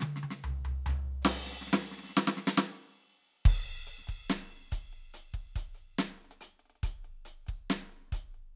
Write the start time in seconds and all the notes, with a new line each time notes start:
0.01 snare, high tom
0.17 snare
0.24 high tom
0.31 snare
0.45 floor tom
0.66 floor tom
0.87 snare, floor tom
1.22 snare, hi-hat pedal, crash
1.47 snare
1.53 snare
1.62 snare
1.67 snare
1.74 snare
1.83 snare
1.92 snare
1.99 snare
2.04 snare
2.10 snare
2.17 snare
2.28 snare
2.38 snare
2.58 snare
3.46 kick, crash
3.65 closed hi-hat
3.87 closed hi-hat
3.99 snare
4.08 kick, closed hi-hat
4.30 closed hi-hat, snare
4.51 closed hi-hat
4.72 closed hi-hat, kick
4.93 closed hi-hat
5.14 closed hi-hat
5.34 kick, closed hi-hat
5.56 closed hi-hat, kick
5.75 closed hi-hat
5.99 closed hi-hat, snare
6.18 closed hi-hat
6.25 closed hi-hat
6.32 closed hi-hat
6.41 closed hi-hat
6.60 closed hi-hat
6.66 closed hi-hat
6.70 closed hi-hat
6.76 closed hi-hat
6.84 closed hi-hat, kick
7.05 closed hi-hat
7.26 closed hi-hat
7.47 kick, closed hi-hat
7.71 closed hi-hat, snare
7.90 closed hi-hat
8.13 closed hi-hat, kick
8.35 closed hi-hat